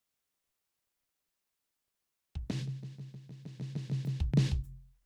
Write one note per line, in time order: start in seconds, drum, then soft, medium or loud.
2.36 kick soft
2.50 snare loud
2.50 floor tom loud
2.68 snare soft
2.68 floor tom soft
2.83 snare soft
2.83 floor tom soft
2.99 snare soft
2.99 floor tom soft
3.14 snare soft
3.14 floor tom soft
3.30 snare soft
3.30 floor tom soft
3.46 snare soft
3.46 floor tom soft
3.60 snare soft
3.60 floor tom medium
3.76 snare medium
3.76 floor tom medium
3.90 snare medium
3.90 floor tom medium
4.05 snare medium
4.05 floor tom medium
4.05 hi-hat pedal soft
4.20 kick medium
4.33 floor tom loud
4.33 hi-hat pedal soft
4.37 snare loud
4.52 kick medium
4.64 hi-hat pedal soft